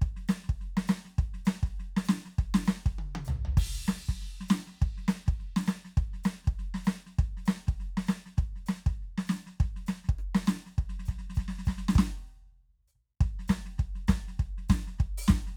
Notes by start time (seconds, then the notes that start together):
0.02 kick, snare
0.17 snare
0.29 snare, hi-hat pedal
0.45 snare
0.50 kick
0.62 snare
0.78 snare
0.88 snare, hi-hat pedal
1.06 snare
1.19 kick, snare
1.35 snare
1.46 snare, hi-hat pedal
1.64 kick, snare
1.80 snare
1.97 snare
2.05 hi-hat pedal
2.10 snare
2.26 snare
2.39 kick, snare
2.55 snare
2.66 snare, hi-hat pedal
2.87 kick, snare
2.99 high tom
3.16 high tom
3.26 floor tom, hi-hat pedal
3.46 floor tom
3.53 kick
3.58 kick, crash
3.87 snare, hi-hat pedal
4.09 kick, snare
4.23 snare
4.41 snare
4.49 snare, hi-hat pedal
4.68 snare
4.82 kick, snare
4.98 snare
5.09 snare, hi-hat pedal
5.27 kick, snare
5.40 snare
5.57 snare
5.67 snare, hi-hat pedal
5.85 snare
5.98 kick, snare
6.14 snare
6.25 snare, hi-hat pedal
6.45 kick, snare
6.59 snare
6.75 snare
6.85 snare, hi-hat pedal
7.07 snare
7.19 kick, snare
7.37 kick, snare
7.46 snare, hi-hat pedal
7.68 kick, snare
7.81 snare
7.98 snare
8.08 snare, hi-hat pedal
8.27 snare
8.38 kick, snare
8.56 snare
8.67 snare, hi-hat pedal
8.87 kick, snare
9.03 snare
9.19 snare
9.28 snare, hi-hat pedal
9.47 snare
9.61 kick, snare
9.77 snare
9.87 snare, hi-hat pedal
10.05 snare
10.10 kick
10.19 cross-stick
10.36 snare
10.47 snare, hi-hat pedal
10.67 snare
10.79 kick, snare
10.90 snare
11.06 kick, hi-hat pedal
11.10 snare
11.19 snare
11.30 snare
11.36 kick, hi-hat pedal
11.40 snare
11.49 snare
11.59 snare
11.66 kick, snare, hi-hat pedal
11.79 snare
11.89 snare
11.94 kick, hi-hat pedal
11.99 snare
12.88 hi-hat pedal
12.96 kick
13.21 kick, snare
13.40 snare
13.49 kick, snare, hi-hat pedal
13.66 snare
13.79 kick, snare
13.96 snare
14.08 kick, snare, hi-hat pedal
14.29 snare
14.40 kick, snare
14.59 snare
14.70 kick, snare, hi-hat pedal
14.88 snare
15.00 kick, snare
15.18 open hi-hat
15.28 kick, snare, hi-hat pedal
15.47 snare